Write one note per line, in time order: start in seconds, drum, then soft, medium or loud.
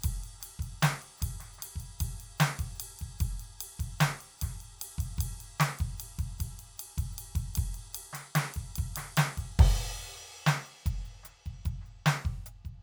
0.01 kick medium
0.01 hi-hat pedal medium
0.01 ride loud
0.24 ride soft
0.40 snare soft
0.40 hi-hat pedal medium
0.40 ride loud
0.59 kick soft
0.59 ride medium
0.81 snare loud
0.81 hi-hat pedal medium
0.81 ride loud
1.02 ride soft
1.17 snare soft
1.17 hi-hat pedal medium
1.22 kick medium
1.22 ride loud
1.40 snare soft
1.40 ride medium
1.53 hi-hat pedal medium
1.58 snare soft
1.62 ride loud
1.76 kick soft
1.80 ride medium
1.99 kick medium
1.99 hi-hat pedal medium
1.99 ride loud
2.20 ride medium
2.38 snare loud
2.38 hi-hat pedal medium
2.38 ride loud
2.59 kick medium
2.59 ride medium
2.75 hi-hat pedal medium
2.80 ride loud
2.99 kick soft
2.99 ride medium
3.18 kick medium
3.18 hi-hat pedal medium
3.18 ride loud
3.40 ride medium
3.59 hi-hat pedal medium
3.59 ride loud
3.79 kick medium
3.79 ride medium
3.98 snare loud
3.98 hi-hat pedal medium
3.98 ride loud
4.21 ride medium
4.38 kick medium
4.38 hi-hat pedal medium
4.38 ride loud
4.43 snare soft
4.61 ride soft
4.79 hi-hat pedal medium
4.79 ride loud
4.98 kick medium
4.98 ride medium
5.17 kick medium
5.17 hi-hat pedal medium
5.17 ride loud
5.40 ride medium
5.58 snare loud
5.58 hi-hat pedal medium
5.58 ride loud
5.79 kick medium
5.79 ride medium
5.97 hi-hat pedal medium
5.97 ride loud
6.19 kick medium
6.19 ride medium
6.38 kick medium
6.38 hi-hat pedal medium
6.38 ride loud
6.59 ride medium
6.78 hi-hat pedal medium
6.78 ride loud
6.98 kick medium
6.98 ride medium
7.13 hi-hat pedal medium
7.18 ride loud
7.35 kick medium
7.35 ride medium
7.54 kick medium
7.54 hi-hat pedal medium
7.54 ride loud
7.75 ride medium
7.93 hi-hat pedal medium
7.93 ride loud
8.13 snare medium
8.13 ride bell medium
8.35 snare loud
8.35 hi-hat pedal medium
8.35 ride loud
8.54 kick soft
8.54 ride medium
8.76 kick medium
8.76 hi-hat pedal medium
8.76 ride loud
8.96 snare medium
8.96 ride loud
9.16 snare loud
9.16 hi-hat pedal medium
9.16 ride loud
9.37 kick soft
9.37 ride medium
9.59 kick loud
9.59 crash loud
9.99 hi-hat pedal soft
10.46 closed hi-hat medium
10.46 snare loud
10.66 closed hi-hat soft
10.86 closed hi-hat loud
10.86 kick medium
11.05 closed hi-hat soft
11.23 closed hi-hat loud
11.23 snare soft
11.46 kick soft
11.46 closed hi-hat soft
11.65 closed hi-hat medium
11.65 kick medium
11.81 snare soft
11.86 closed hi-hat soft
12.06 closed hi-hat loud
12.06 snare loud
12.25 kick medium
12.25 closed hi-hat soft
12.46 closed hi-hat loud
12.65 kick soft
12.65 closed hi-hat soft